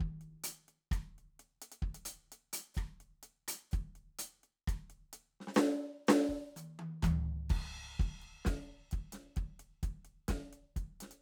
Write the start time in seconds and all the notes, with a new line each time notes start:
0.01 kick
0.21 closed hi-hat
0.44 closed hi-hat
0.69 closed hi-hat
0.92 kick, cross-stick, closed hi-hat
1.19 closed hi-hat
1.40 closed hi-hat
1.62 closed hi-hat
1.72 closed hi-hat
1.83 kick
1.95 closed hi-hat
2.06 closed hi-hat
2.32 closed hi-hat
2.54 open hi-hat
2.75 kick, cross-stick, closed hi-hat, hi-hat pedal
3.01 closed hi-hat
3.23 closed hi-hat
3.48 open hi-hat, cross-stick
3.72 kick, closed hi-hat, hi-hat pedal
3.96 closed hi-hat
4.19 closed hi-hat
4.44 closed hi-hat
4.68 kick, cross-stick, closed hi-hat
4.90 closed hi-hat
5.13 closed hi-hat
5.41 snare
5.48 snare
5.55 snare, hi-hat pedal
6.08 snare, hi-hat pedal
6.29 kick
6.57 hi-hat pedal, high tom
6.79 high tom
7.03 kick, floor tom, hi-hat pedal, high tom
7.50 kick, crash
8.00 kick, closed hi-hat
8.22 closed hi-hat
8.46 kick, snare, closed hi-hat
8.92 kick, closed hi-hat
9.13 snare, closed hi-hat
9.37 kick, closed hi-hat
9.60 closed hi-hat
9.83 kick, closed hi-hat
10.05 closed hi-hat
10.29 kick, snare, closed hi-hat
10.53 closed hi-hat
10.77 kick, closed hi-hat
11.01 snare, closed hi-hat
11.12 closed hi-hat